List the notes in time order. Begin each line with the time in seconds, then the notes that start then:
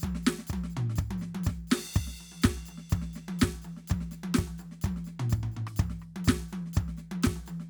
0.01 kick, percussion
0.05 high tom
0.16 snare
0.24 snare, percussion
0.40 snare
0.48 kick, percussion
0.54 high tom
0.65 snare
0.71 percussion
0.78 floor tom
0.91 snare
0.97 kick, snare, percussion
1.12 high tom
1.19 snare, percussion
1.36 high tom
1.45 kick, percussion
1.49 snare
1.68 crash, percussion
1.73 snare
1.94 kick, percussion
1.99 high tom
2.08 snare
2.16 percussion
2.21 high tom
2.33 high tom
2.43 kick, snare, percussion
2.58 high tom
2.67 high tom, percussion
2.79 snare
2.91 kick, high tom, percussion
3.03 snare
3.14 snare, percussion
3.29 high tom
3.40 kick, snare, percussion
3.54 high tom
3.63 high tom, percussion
3.77 snare
3.89 kick, high tom, percussion
4.01 snare
4.12 snare, percussion
4.24 high tom
4.35 snare, percussion
4.39 kick
4.48 high tom
4.59 high tom, percussion
4.72 snare
4.82 kick, percussion
4.87 high tom
4.97 snare
5.05 snare, percussion
5.21 floor tom
5.31 kick, snare, percussion
5.44 floor tom
5.53 percussion
5.58 floor tom
5.68 cross-stick
5.77 kick, percussion
5.82 high tom
5.91 snare
6.00 cross-stick, percussion
6.17 high tom
6.25 kick, percussion
6.30 snare
6.41 high tom
6.49 percussion
6.54 high tom
6.67 snare
6.74 kick, percussion
6.79 high tom
6.89 snare
6.98 snare, percussion
7.12 high tom
7.24 kick, snare, percussion
7.37 high tom
7.47 high tom, percussion
7.61 snare